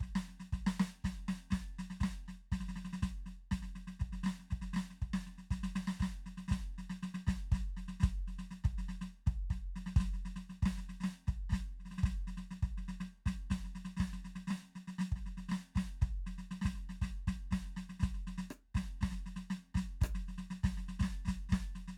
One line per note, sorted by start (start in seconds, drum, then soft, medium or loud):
0.01 kick soft
0.01 snare soft
0.16 snare medium
0.29 snare soft
0.40 snare soft
0.53 kick soft
0.53 snare soft
0.67 snare loud
0.80 snare loud
1.05 kick soft
1.05 snare medium
1.18 snare soft
1.29 snare medium
1.51 snare soft
1.53 kick soft
1.53 snare medium
1.79 snare medium
1.91 snare soft
2.01 kick soft
2.01 snare medium
2.29 snare soft
2.52 kick soft
2.52 snare medium
2.61 snare soft
2.69 snare soft
2.76 snare soft
2.85 snare soft
2.93 snare medium
3.03 kick soft
3.03 snare medium
3.26 snare soft
3.52 kick soft
3.52 snare medium
3.63 snare soft
3.76 snare soft
3.88 snare soft
4.00 kick soft
4.00 snare soft
4.13 snare soft
4.24 snare medium
4.27 snare medium
4.40 snare soft
4.51 kick soft
4.51 snare soft
4.62 snare soft
4.74 snare medium
4.77 snare medium
4.91 snare soft
5.02 kick soft
5.02 snare soft
5.14 snare medium
5.27 snare soft
5.39 snare soft
5.51 kick soft
5.51 snare medium
5.64 snare medium
5.76 snare medium
5.88 snare medium
6.00 kick soft
6.00 snare soft
6.03 snare medium
6.27 snare soft
6.38 snare soft
6.49 kick medium
6.49 snare medium
6.52 snare medium
6.79 snare soft
6.90 snare medium
7.03 snare medium
7.15 snare soft
7.27 kick medium
7.27 snare soft
7.29 snare medium
7.52 kick medium
7.52 snare soft
7.52 snare medium
7.77 snare soft
7.89 snare soft
8.01 snare medium
8.03 kick medium
8.03 snare medium
8.28 snare soft
8.39 snare soft
8.51 snare soft
8.64 kick medium
8.64 snare soft
8.79 snare soft
8.89 snare soft
9.02 snare medium
9.27 kick medium
9.27 snare soft
9.51 kick soft
9.51 snare soft
9.76 snare soft
9.87 snare soft
9.97 kick medium
9.97 snare medium
10.00 snare medium
10.14 snare soft
10.26 snare soft
10.36 snare soft
10.50 snare soft
10.63 kick medium
10.63 snare soft
10.66 snare medium
10.78 snare soft
10.89 snare soft
11.01 snare soft
11.04 snare medium
11.28 kick medium
11.28 snare soft
11.50 kick medium
11.50 snare soft
11.54 snare medium
11.80 snare soft
11.86 snare soft
11.92 snare soft
11.99 snare medium
12.04 kick medium
12.04 snare medium
12.28 snare soft
12.38 snare soft
12.51 snare soft
12.63 kick medium
12.63 snare soft
12.78 snare soft
12.89 snare soft
13.01 snare soft
13.26 kick soft
13.26 snare soft
13.26 snare medium
13.51 kick soft
13.51 snare soft
13.51 snare medium
13.65 snare soft
13.76 snare soft
13.85 snare soft
13.97 kick soft
13.97 snare medium
14.01 snare medium
14.13 snare soft
14.25 snare soft
14.36 snare soft
14.48 snare medium
14.51 snare medium
14.63 snare soft
14.76 snare soft
14.88 snare soft
14.99 snare medium
15.01 snare medium
15.12 kick soft
15.16 snare soft
15.38 snare soft
15.49 snare soft
15.52 snare medium
15.76 kick soft
15.76 snare soft
15.78 snare medium
16.02 kick medium
16.02 snare soft
16.27 snare soft
16.39 snare soft
16.51 snare soft
16.62 kick soft
16.62 snare medium
16.66 snare medium
16.76 snare soft
16.90 snare soft
17.02 kick soft
17.02 snare medium
17.28 kick soft
17.28 snare medium
17.51 kick soft
17.51 snare soft
17.53 snare medium
17.66 snare soft
17.77 snare medium
17.90 snare soft
18.00 kick medium
18.00 snare soft
18.04 snare medium
18.15 snare soft
18.27 snare soft
18.38 snare medium
18.51 cross-stick medium
18.75 kick soft
18.75 snare soft
18.77 snare medium
19.01 kick medium
19.01 snare soft
19.03 snare medium
19.12 snare soft
19.27 snare soft
19.51 snare medium
19.75 kick soft
19.75 snare soft
19.77 snare medium
20.02 kick medium
20.02 cross-stick medium
20.02 snare soft
20.15 snare soft
20.29 snare soft
20.38 snare soft
20.51 snare soft
20.64 kick medium
20.64 snare soft
20.64 snare medium
20.78 snare soft
20.89 snare soft
21.00 kick medium
21.00 snare medium
21.03 snare medium
21.26 kick soft
21.26 snare soft
21.28 snare medium
21.50 kick medium
21.50 snare soft
21.53 snare medium
21.76 snare soft
21.88 snare soft